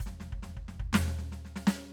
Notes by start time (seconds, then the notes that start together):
0.00 kick, hi-hat pedal
0.06 snare, floor tom
0.20 snare, floor tom
0.33 kick
0.43 snare, floor tom
0.57 kick
0.69 snare, floor tom
0.80 kick
0.93 snare, floor tom
1.08 snare
1.18 snare
1.32 snare
1.45 snare
1.56 snare
1.67 snare